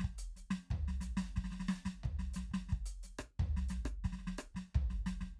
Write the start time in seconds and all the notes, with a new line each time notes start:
0.01 snare
0.05 kick
0.19 closed hi-hat
0.37 snare, hi-hat pedal
0.51 kick, snare
0.71 kick, floor tom
0.89 snare
1.02 snare, hi-hat pedal
1.18 kick, snare
1.37 kick, snare
1.45 snare
1.51 snare
1.61 snare
1.68 snare, hi-hat pedal
1.86 kick, snare
2.04 kick, floor tom
2.20 snare
2.31 snare, hi-hat pedal
2.37 snare
2.52 kick, snare
2.70 kick, snare
2.87 closed hi-hat
3.04 snare, hi-hat pedal
3.20 kick, cross-stick
3.40 kick, floor tom
3.57 snare
3.70 snare, hi-hat pedal
3.85 kick, cross-stick
4.05 kick, snare
4.13 snare
4.20 snare
4.28 snare
4.39 cross-stick, hi-hat pedal
4.55 kick, snare
4.76 kick, floor tom
4.91 snare
5.07 snare, hi-hat pedal
5.21 kick, snare